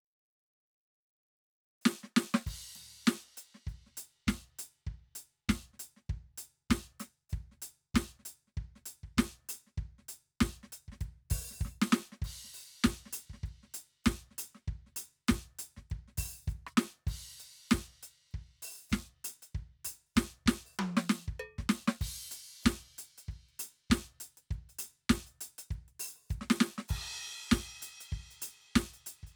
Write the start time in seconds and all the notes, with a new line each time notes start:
1.81 snare, hi-hat pedal
2.03 snare
2.16 snare
2.34 snare
2.46 kick, crash
2.75 snare, floor tom, ride
3.06 snare, hi-hat pedal
3.37 closed hi-hat
3.54 snare
3.67 closed hi-hat, kick
3.86 snare
3.97 closed hi-hat
4.27 kick, snare
4.59 closed hi-hat
4.87 kick
5.15 closed hi-hat
5.49 kick, snare
5.73 snare
5.79 closed hi-hat
5.97 snare
6.06 kick, closed hi-hat
6.38 closed hi-hat
6.70 kick, snare
7.00 closed hi-hat, snare
7.29 kick, hi-hat pedal
7.51 snare
7.62 closed hi-hat
7.94 kick, snare
8.19 snare
8.25 closed hi-hat
8.47 snare
8.55 kick, closed hi-hat
8.76 snare
8.86 closed hi-hat
9.03 kick
9.17 kick, snare
9.44 snare
9.49 closed hi-hat
9.67 snare
9.78 kick, closed hi-hat
9.98 snare
10.08 closed hi-hat
10.41 kick, snare
10.63 snare
10.72 closed hi-hat
10.88 kick
10.92 snare
11.01 kick, closed hi-hat
11.30 open hi-hat, kick
11.51 snare
11.61 kick
11.65 snare
11.82 snare
11.92 snare
12.12 snare
12.22 kick, crash
12.44 snare
12.54 open hi-hat
12.84 kick, snare, hi-hat pedal
13.06 snare
13.13 closed hi-hat
13.30 kick, snare
13.43 kick, closed hi-hat
13.63 snare
13.74 closed hi-hat
14.04 kick, snare, hi-hat pedal
14.31 snare
14.38 closed hi-hat
14.55 snare
14.68 kick, closed hi-hat
14.86 snare
14.96 closed hi-hat
15.28 kick, snare, hi-hat pedal
15.59 closed hi-hat
15.77 kick, snare
15.90 kick, closed hi-hat
16.08 snare
16.17 open hi-hat, kick
16.47 kick, hi-hat pedal
16.67 cross-stick
16.77 snare
17.07 kick, crash
17.40 closed hi-hat
17.70 kick, snare, hi-hat pedal
18.03 closed hi-hat
18.31 kick, closed hi-hat
18.57 closed hi-hat
18.62 open hi-hat
18.90 kick, snare, hi-hat pedal
19.24 closed hi-hat
19.42 closed hi-hat
19.55 kick, closed hi-hat
19.85 open hi-hat, kick
20.07 open hi-hat
20.15 kick, snare, hi-hat pedal
20.46 kick, snare
20.65 open hi-hat
20.73 hi-hat pedal
20.79 kick, high tom
20.97 snare
21.09 snare
21.28 kick
21.40 percussion
21.58 kick, snare
21.69 snare
21.88 snare
22.01 kick, crash
22.31 closed hi-hat
22.63 kick, snare, hi-hat pedal
22.98 closed hi-hat
23.18 closed hi-hat
23.28 kick, closed hi-hat
23.49 closed hi-hat
23.59 closed hi-hat
23.90 kick, snare
24.20 closed hi-hat
24.37 closed hi-hat
24.51 kick, closed hi-hat
24.69 closed hi-hat
24.79 closed hi-hat
25.09 kick, snare
25.26 closed hi-hat
25.41 closed hi-hat
25.58 closed hi-hat
25.71 kick, closed hi-hat
25.88 closed hi-hat
25.99 open hi-hat
26.16 open hi-hat
26.30 kick, hi-hat pedal
26.41 snare
26.50 snare
26.60 snare
26.78 snare
26.88 kick, hi-hat pedal, ride
27.06 closed hi-hat
27.21 crash
27.51 kick, snare
27.70 closed hi-hat
27.82 closed hi-hat
28.00 closed hi-hat
28.12 kick, closed hi-hat
28.31 closed hi-hat
28.42 closed hi-hat
28.62 closed hi-hat
28.75 kick, snare
28.93 closed hi-hat
29.06 closed hi-hat
29.23 closed hi-hat, kick